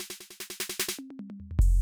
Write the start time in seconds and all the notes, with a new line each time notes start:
0.00 snare
0.10 snare
0.20 snare
0.30 snare
0.40 snare
0.50 snare
0.60 snare
0.69 snare, hi-hat pedal
0.80 snare
0.89 snare
0.99 high tom
1.10 high tom
1.19 mid tom
1.30 mid tom
1.40 floor tom
1.51 floor tom
1.59 kick, crash